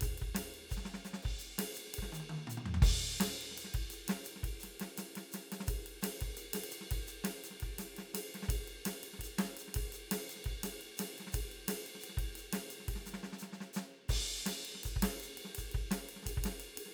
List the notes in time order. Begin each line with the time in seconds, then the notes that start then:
0.01 kick, hi-hat pedal, ride
0.18 kick, ride
0.35 snare, hi-hat pedal, ride
0.54 ride
0.62 snare
0.70 kick, hi-hat pedal, ride
0.77 snare
0.85 snare
0.94 snare
1.05 snare, hi-hat pedal
1.13 snare
1.23 kick, ride
1.39 hi-hat pedal, ride
1.58 snare, ride
1.74 hi-hat pedal, ride
1.87 snare
1.94 ride
1.98 kick, snare
2.12 hi-hat pedal, high tom
2.20 high tom
2.30 high tom
2.38 high tom
2.47 hi-hat pedal, mid tom
2.57 mid tom
2.66 floor tom
2.74 floor tom
2.82 kick, hi-hat pedal, ride
3.20 snare, hi-hat pedal, ride
3.27 snare
3.41 ride
3.51 snare
3.57 hi-hat pedal, ride
3.64 snare
3.74 kick, ride
3.90 hi-hat pedal, ride
4.08 snare, ride
4.24 hi-hat pedal, ride
4.36 snare
4.43 kick, ride
4.60 snare, hi-hat pedal, ride
4.80 snare, ride
4.97 snare, hi-hat pedal, ride
5.16 snare, ride
5.32 snare, hi-hat pedal, ride
5.52 snare, ride
5.60 snare
5.67 kick, hi-hat pedal, ride
5.86 ride
6.02 snare, hi-hat pedal, ride
6.21 kick, ride
6.37 hi-hat pedal, ride
6.54 snare, ride
6.64 ride
6.71 hi-hat pedal, ride
6.81 snare
6.91 kick, ride
7.07 hi-hat pedal, ride
7.24 snare, ride
7.44 hi-hat pedal, ride
7.51 snare
7.60 kick, ride
7.79 snare, hi-hat pedal, ride
7.97 snare, ride
8.14 snare, hi-hat pedal, ride
8.34 snare, ride
8.42 snare
8.49 kick, hi-hat pedal, ride
8.68 ride
8.85 snare, hi-hat pedal, ride
9.03 ride
9.13 snare
9.19 kick, ride
9.24 hi-hat pedal
9.39 snare, ride
9.45 snare
9.57 hi-hat pedal, ride
9.68 snare
9.74 kick, ride
9.92 hi-hat pedal, ride
10.11 snare, ride
10.29 hi-hat pedal, ride
10.36 snare
10.44 kick, ride
10.63 snare, hi-hat pedal, ride
10.81 ride
10.97 snare, hi-hat pedal, ride
11.18 snare, ride
11.27 snare
11.32 kick, hi-hat pedal, ride
11.52 ride
11.68 snare, hi-hat pedal, ride
11.86 ride
11.95 snare
12.01 hi-hat pedal, ride
12.09 snare
12.17 kick, ride
12.36 hi-hat pedal, ride
12.53 snare, ride
12.70 hi-hat pedal, ride
12.80 snare
12.88 kick, ride
12.96 snare
13.06 snare, hi-hat pedal
13.14 snare
13.23 snare
13.33 snare
13.39 snare, hi-hat pedal
13.53 snare
13.61 snare
13.73 snare, hi-hat pedal
14.09 kick, hi-hat pedal, ride
14.46 snare, hi-hat pedal, ride
14.65 ride
14.75 snare
14.84 kick, hi-hat pedal, ride
14.96 kick
15.02 snare, ride
15.20 hi-hat pedal, ride
15.37 ride
15.45 snare
15.55 kick, hi-hat pedal, ride
15.72 kick, ride
15.91 snare, hi-hat pedal, ride
16.09 ride
16.16 snare
16.23 kick, snare, hi-hat pedal
16.27 ride
16.37 kick
16.44 snare, ride
16.59 hi-hat pedal, ride
16.78 ride
16.86 snare